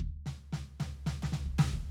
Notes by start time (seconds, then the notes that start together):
0.00 kick
0.26 snare, floor tom
0.53 snare, floor tom
0.80 snare, floor tom
1.07 snare, floor tom
1.23 snare, floor tom
1.33 snare, floor tom
1.46 kick
1.59 snare, floor tom
1.74 kick